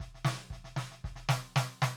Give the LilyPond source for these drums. \new DrumStaff \drummode { \time 4/4 \tempo 4 = 114 <bd sn>16 sn16 sn16 sn16 <bd sn>16 sn16 sn16 sn16 <bd sn>16 sn16 sn8 sn8 sn8 | }